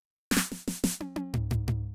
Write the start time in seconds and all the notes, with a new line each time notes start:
0.31 snare
0.37 snare
0.50 snare, hi-hat pedal
0.68 snare
0.84 snare
0.98 hi-hat pedal, high tom
1.16 high tom
1.34 floor tom
1.50 floor tom, hi-hat pedal
1.68 floor tom